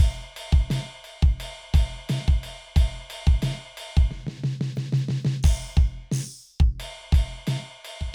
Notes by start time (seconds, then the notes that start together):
0.01 kick, ride
0.39 ride
0.55 kick
0.73 snare, ride
1.06 ride
1.25 kick
1.42 ride
1.76 kick, ride
2.11 snare, ride
2.30 kick
2.45 ride
2.78 kick, ride
3.12 ride
3.29 kick
3.44 snare, ride
3.79 ride
3.99 kick
4.13 snare, floor tom
4.29 snare, floor tom
4.46 snare, floor tom
4.63 snare, floor tom
4.78 snare, floor tom, hi-hat pedal
4.95 snare, floor tom
5.00 hi-hat pedal
5.11 snare, floor tom
5.23 hi-hat pedal
5.27 snare, floor tom
5.45 kick, crash, ride
5.79 kick, snare
6.14 snare, crash
6.62 kick, snare
6.82 ride
7.15 kick, ride
7.49 snare, ride
7.87 ride
8.03 kick